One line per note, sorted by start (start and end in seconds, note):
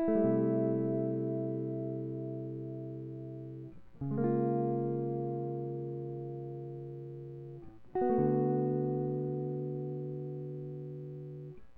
0.00 3.73 E4
0.09 3.64 A3
0.16 3.71 G3
0.26 3.70 C3
4.03 7.60 C#3
4.12 7.08 G#3
4.18 7.57 A#3
4.24 7.65 F4
7.96 11.58 F#4
8.02 11.49 B3
8.10 10.87 A3
8.19 11.53 D3